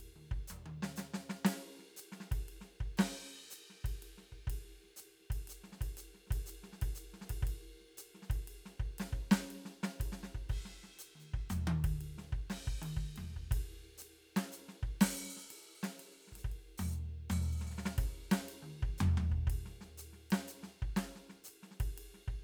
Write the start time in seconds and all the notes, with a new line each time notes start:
0.01 ride
0.17 high tom
0.32 kick
0.49 hi-hat pedal, floor tom
0.67 high tom
0.83 snare
0.97 snare, hi-hat pedal
1.15 snare
1.30 snare
1.46 snare, ride
1.80 snare
1.89 snare
1.97 hi-hat pedal, ride
2.13 snare
2.21 snare
2.32 kick, ride
2.49 ride
2.62 snare
2.81 kick
2.98 snare, crash
3.51 hi-hat pedal, ride
3.71 snare
3.85 kick, ride
4.03 ride
4.19 snare
4.33 kick
4.48 kick, ride
4.65 snare
4.84 snare
4.97 hi-hat pedal, ride
5.21 snare
5.31 kick, ride
5.48 hi-hat pedal, ride
5.65 snare
5.73 snare
5.79 kick, snare, ride
5.98 hi-hat pedal, ride
6.15 snare
6.28 kick, snare
6.33 ride
6.47 hi-hat pedal, ride
6.64 snare
6.74 snare
6.83 kick, ride
6.96 hi-hat pedal, ride
7.14 snare
7.22 snare
7.31 kick, ride
7.43 kick
7.48 ride
7.81 snare
7.98 hi-hat pedal, ride
8.15 snare
8.23 snare
8.31 kick, ride
8.49 ride
8.67 snare
8.81 kick
8.99 snare, ride
9.14 kick
9.32 snare, ride
9.51 ride
9.66 snare
9.84 snare
10.01 kick, ride
10.13 snare
10.24 snare
10.36 kick
10.50 kick, crash
10.66 snare
10.84 snare
11.00 hi-hat pedal, ride
11.16 high tom
11.21 hi-hat pedal
11.35 kick
11.51 floor tom, hi-hat pedal
11.59 closed hi-hat
11.62 closed hi-hat
11.68 high tom
11.85 kick, ride
12.02 ride
12.19 snare
12.33 kick
12.51 snare, crash
12.68 kick
12.83 high tom, ride
12.97 kick
13.17 floor tom, ride
13.37 kick
13.52 kick, ride
13.72 kick
13.99 hi-hat pedal
14.03 ride
14.37 snare, ride
14.53 hi-hat pedal, ride
14.69 snare
14.84 kick
15.02 open hi-hat, snare
15.37 snare
15.51 ride
15.84 snare, ride
16.01 ride
16.28 snare
16.33 kick, ride
16.37 snare, hi-hat pedal
16.45 kick
16.53 ride
16.79 open hi-hat, floor tom
16.94 hi-hat pedal
17.31 open hi-hat, floor tom
17.62 snare
17.67 snare
17.72 snare
17.79 snare
17.86 snare
17.99 kick, ride
18.32 snare, ride
18.50 hi-hat pedal, ride
18.63 high tom
18.83 kick
18.99 floor tom, hi-hat pedal
19.18 floor tom
19.32 kick
19.48 kick, ride
19.66 snare
19.82 snare
19.99 hi-hat pedal, ride
20.14 snare
20.32 snare, ride
20.49 hi-hat pedal, ride
20.64 snare
20.83 kick
20.97 snare, ride
21.16 snare
21.30 snare
21.45 hi-hat pedal
21.49 ride
21.64 snare
21.72 snare
21.81 kick, ride
21.99 ride
22.15 snare
22.29 kick